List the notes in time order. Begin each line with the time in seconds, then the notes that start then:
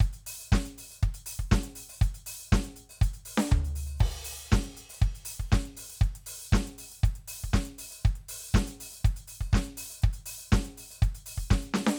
0.01 closed hi-hat, kick
0.14 closed hi-hat
0.27 open hi-hat
0.40 open hi-hat
0.48 hi-hat pedal
0.53 kick, snare
0.66 closed hi-hat
0.79 open hi-hat
0.91 open hi-hat
0.98 hi-hat pedal
1.03 kick, closed hi-hat
1.15 closed hi-hat
1.27 open hi-hat
1.40 kick, open hi-hat
1.52 kick, snare, hi-hat pedal
1.64 closed hi-hat
1.76 open hi-hat
1.90 open hi-hat
1.98 hi-hat pedal
2.02 closed hi-hat, kick
2.15 closed hi-hat
2.27 open hi-hat
2.40 open hi-hat
2.49 hi-hat pedal
2.53 kick, snare
2.64 closed hi-hat
2.77 closed hi-hat
2.90 open hi-hat
2.98 hi-hat pedal
3.02 closed hi-hat, kick
3.14 closed hi-hat
3.26 open hi-hat
3.38 snare
3.48 hi-hat pedal
3.52 kick, floor tom
3.65 closed hi-hat
3.76 open hi-hat
3.87 open hi-hat
3.98 kick, hi-hat pedal, crash
4.12 closed hi-hat
4.25 open hi-hat
4.40 open hi-hat
4.48 hi-hat pedal
4.53 kick, snare
4.64 closed hi-hat
4.77 open hi-hat
4.90 open hi-hat
4.98 hi-hat pedal
5.02 kick, closed hi-hat
5.16 closed hi-hat
5.26 open hi-hat
5.40 kick, open hi-hat
5.50 kick, snare, hi-hat pedal
5.66 closed hi-hat
5.77 open hi-hat
5.90 open hi-hat
5.99 kick, hi-hat pedal
6.04 closed hi-hat
6.16 closed hi-hat
6.27 open hi-hat
6.41 open hi-hat
6.49 kick, hi-hat pedal
6.54 snare
6.68 closed hi-hat
6.79 open hi-hat
6.92 open hi-hat
6.99 hi-hat pedal
7.04 kick, closed hi-hat
7.16 closed hi-hat
7.28 open hi-hat
7.39 open hi-hat
7.44 kick
7.54 kick, snare, hi-hat pedal
7.66 closed hi-hat
7.79 open hi-hat
7.91 open hi-hat
8.02 closed hi-hat, kick, hi-hat pedal
8.16 closed hi-hat
8.29 open hi-hat
8.40 open hi-hat
8.53 kick, snare, hi-hat pedal
8.68 closed hi-hat
8.81 open hi-hat
8.92 open hi-hat
9.01 hi-hat pedal
9.05 kick, closed hi-hat
9.17 closed hi-hat
9.28 open hi-hat
9.41 open hi-hat, kick
9.54 kick, snare, hi-hat pedal
9.65 closed hi-hat
9.78 open hi-hat
9.90 open hi-hat
9.99 closed hi-hat, hi-hat pedal
10.04 kick
10.14 closed hi-hat
10.26 open hi-hat
10.38 open hi-hat
10.49 kick, snare, hi-hat pedal
10.66 closed hi-hat
10.78 open hi-hat
10.91 open hi-hat
10.98 hi-hat pedal
11.03 kick, closed hi-hat
11.15 closed hi-hat
11.26 open hi-hat
11.38 open hi-hat, kick
11.50 kick, snare, hi-hat pedal
11.63 closed hi-hat
11.74 snare
11.87 snare
11.96 hi-hat pedal